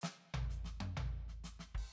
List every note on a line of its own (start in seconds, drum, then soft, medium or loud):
0.01 snare medium
0.01 hi-hat pedal soft
0.21 snare soft
0.34 floor tom loud
0.49 snare soft
0.49 hi-hat pedal soft
0.64 snare soft
0.80 closed hi-hat soft
0.80 high tom medium
0.97 floor tom medium
1.28 snare soft
1.44 snare soft
1.44 hi-hat pedal medium
1.59 snare soft
1.75 kick soft
1.75 crash soft